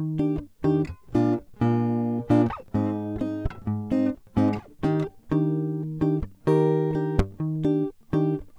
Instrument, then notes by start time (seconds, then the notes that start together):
acoustic guitar
0.00 D#3
0.20 D4 G4
0.66 D#3 D4 G4
1.17 A#2 D4 F4
1.63 A#2 D4 F4
2.32 A#2 D4 F4
2.77 G#2 C4 D#4
3.23 C4 D#4
3.69 G#2
3.93 C4 D#4
4.39 G#2 C4 D#4
4.85 D#3 D4 G4
5.33 D#3 D4 G4
6.03 D#3 D4 G4
6.49 D#3 A#3 G4 A#4
6.97 D4 G4
7.42 D#3
7.65 D4 G4
8.15 D#3 D4 G4